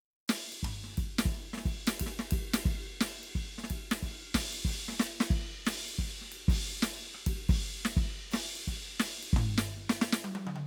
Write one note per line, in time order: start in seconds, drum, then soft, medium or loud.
0.28 snare loud
0.28 hi-hat pedal medium
0.28 ride loud
0.52 ride medium
0.63 kick medium
0.63 floor tom loud
0.84 snare soft
0.88 snare soft
0.91 snare soft
0.97 kick medium
0.97 hi-hat pedal medium
0.97 ride medium
1.18 snare loud
1.18 ride medium
1.25 kick medium
1.25 ride medium
1.34 floor tom medium
1.53 snare medium
1.57 snare medium
1.60 snare soft
1.65 kick medium
1.65 hi-hat pedal medium
1.65 ride medium
1.87 snare loud
1.87 ride loud
2.00 kick medium
2.00 ride loud
2.06 snare medium
2.19 snare medium
2.31 kick medium
2.31 hi-hat pedal soft
2.31 ride loud
2.53 snare loud
2.53 ride loud
2.65 kick medium
2.65 ride medium
3.01 snare loud
3.01 hi-hat pedal medium
3.01 ride medium
3.23 ride medium
3.35 kick medium
3.35 ride medium
3.58 snare medium
3.64 snare medium
3.69 kick medium
3.69 hi-hat pedal soft
3.69 ride medium
3.91 snare loud
3.91 ride medium
4.03 kick medium
4.03 ride medium
4.34 kick medium
4.34 snare loud
4.34 hi-hat pedal medium
4.34 ride loud
4.50 snare soft
4.50 ride medium
4.65 kick medium
4.65 ride loud
4.88 snare medium
4.92 snare medium
4.99 snare loud
4.99 hi-hat pedal loud
5.20 snare loud
5.30 kick medium
5.30 crash medium
5.65 snare loud
5.65 hi-hat pedal medium
5.65 ride loud
5.88 ride medium
5.99 kick medium
5.99 ride medium
6.21 snare soft
6.25 snare soft
6.31 snare soft
6.31 hi-hat pedal soft
6.31 ride medium
6.48 kick loud
6.48 ride loud
6.82 snare loud
6.93 ride medium
7.14 cross-stick medium
7.26 kick medium
7.26 ride loud
7.49 kick loud
7.49 ride loud
7.85 snare loud
7.96 kick medium
7.96 snare soft
7.96 crash medium
8.31 snare loud
8.31 hi-hat pedal medium
8.31 ride loud
8.55 ride medium
8.68 kick medium
8.68 ride medium
9.00 snare loud
9.00 hi-hat pedal medium
9.00 ride loud
9.23 ride medium
9.33 kick loud
9.33 floor tom loud
9.58 snare loud
9.89 snare loud
10.01 snare loud
10.13 snare loud
10.24 high tom loud
10.35 high tom loud
10.47 mid tom medium
10.56 mid tom medium